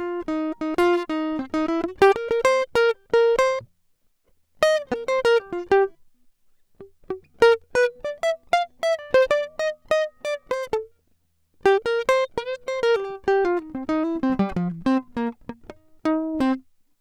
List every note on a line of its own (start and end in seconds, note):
0.00 0.25 F4
0.30 0.56 D#4
0.62 0.78 D#4
0.80 1.08 F4
1.11 1.46 D#4
1.41 1.51 C4
1.55 1.70 D#4
1.71 1.86 E4
1.86 2.06 F#4
2.03 2.12 G4
2.13 2.32 A#4
2.33 2.44 A#4
2.46 2.69 C5
2.77 2.96 A#4
3.15 3.44 A#4
3.40 3.63 C5
4.64 4.78 D#5
4.78 4.87 D5
4.88 4.98 C5
4.93 5.08 A#4
5.10 5.25 C5
5.26 5.38 A#4
5.38 5.46 A4
5.54 5.69 F4
5.73 5.94 G4
7.43 7.60 A#4
7.76 7.94 B4
8.06 8.22 D5
8.24 8.39 E5
8.54 8.70 F5
8.84 8.95 E5
8.95 9.19 D5
9.16 9.29 C5
9.32 9.50 D5
9.61 9.78 D#5
9.93 10.13 D#5
10.26 10.41 D5
10.52 10.70 C5
11.67 11.82 G4
11.87 12.06 A#4
12.10 12.30 C5
12.39 12.50 A#4
12.39 12.54 B4
12.39 12.60 B4
12.69 12.88 C5
12.69 12.83 C5
12.84 12.95 A#4
12.96 13.21 G4
13.29 13.51 G4
13.46 13.59 F4
13.59 13.79 D#4
13.76 13.88 C4
13.90 14.05 D#4
14.05 14.24 E4
14.24 14.44 C4
14.41 14.47 G3
14.58 14.74 F3
14.88 15.04 C4
15.18 15.37 A#3
16.07 16.51 D#4
16.42 16.60 C4